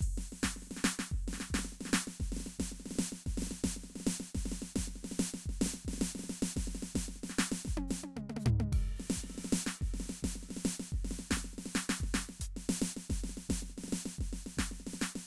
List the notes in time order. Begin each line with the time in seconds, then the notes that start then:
0.01 kick, crash
0.08 kick
0.18 snare
0.28 hi-hat pedal
0.32 snare
0.43 kick, snare
0.56 snare
0.62 snare
0.67 snare
0.71 snare
0.77 snare
0.80 snare
0.84 snare, hi-hat pedal
0.99 snare
1.12 kick, snare
1.18 kick
1.28 snare
1.33 snare
1.38 snare, hi-hat pedal
1.40 snare
1.51 kick, snare
1.59 snare
1.65 snare
1.72 snare
1.81 snare
1.85 snare
1.89 snare, hi-hat pedal
1.93 snare
2.07 snare
2.20 kick, snare
2.27 kick
2.32 snare
2.37 snare
2.40 snare, hi-hat pedal
2.46 snare
2.59 kick, snare
2.72 snare
2.80 snare
2.86 snare
2.91 snare
2.96 snare, hi-hat pedal
2.99 snare
3.12 snare
3.26 kick, snare
3.38 snare
3.42 snare
3.47 snare, hi-hat pedal
3.51 snare
3.64 kick, snare
3.77 snare
3.84 snare
3.90 snare
3.96 snare
4.04 snare, hi-hat pedal
4.20 snare
4.35 kick, snare
4.46 snare
4.52 snare
4.60 snare, hi-hat pedal
4.76 kick, snare
4.88 snare
4.96 snare
5.03 snare
5.12 snare
5.17 snare, hi-hat pedal
5.34 snare
5.46 kick, snare
5.61 snare
5.66 snare
5.71 snare, hi-hat pedal
5.85 kick, snare
5.94 snare
5.98 snare
6.01 snare
6.15 snare
6.20 snare
6.24 snare
6.29 hi-hat pedal
6.42 snare
6.56 kick, snare
6.63 kick
6.67 snare
6.75 snare
6.81 snare, hi-hat pedal
6.95 kick, snare
7.08 snare
7.16 snare
7.23 snare
7.30 snare
7.36 snare, hi-hat pedal
7.52 snare
7.65 kick, snare
7.74 kick, high tom
7.88 snare, hi-hat pedal
8.04 high tom
8.16 kick, mid tom
8.30 mid tom
8.37 hi-hat pedal, mid tom
8.46 floor tom
8.60 mid tom
8.73 kick, ride
8.80 kick
8.86 kick
8.96 hi-hat pedal
9.00 snare
9.10 snare
9.16 kick
9.24 snare
9.30 snare
9.35 snare
9.38 snare
9.45 snare
9.53 snare, hi-hat pedal
9.67 snare
9.81 kick, snare
9.89 kick
9.94 snare
10.00 snare
10.06 snare, hi-hat pedal
10.10 snare
10.23 kick, snare
10.36 snare
10.43 snare
10.49 snare
10.51 snare
10.57 snare
10.62 snare, hi-hat pedal
10.80 snare
10.92 kick, snare
10.99 kick
11.05 snare
11.11 snare, hi-hat pedal
11.19 snare
11.31 kick, snare
11.37 snare
11.45 snare
11.53 snare
11.58 snare
11.66 snare
11.70 hi-hat pedal
11.75 snare
11.90 snare
12.01 kick, snare
12.06 kick
12.14 snare
12.19 snare
12.26 snare, hi-hat pedal
12.40 closed hi-hat, kick
12.57 snare
12.69 snare
12.81 snare, hi-hat pedal
12.97 snare
13.10 kick, snare
13.24 snare
13.30 snare
13.35 snare, hi-hat pedal
13.50 kick, snare
13.62 snare
13.70 snare
13.77 snare
13.84 snare
13.88 snare, hi-hat pedal
13.93 snare
14.06 snare
14.19 kick, snare
14.26 kick
14.33 snare
14.42 hi-hat pedal
14.46 snare
14.58 kick, snare
14.71 snare
14.80 snare
14.87 snare
14.94 snare
14.99 snare, hi-hat pedal
15.16 snare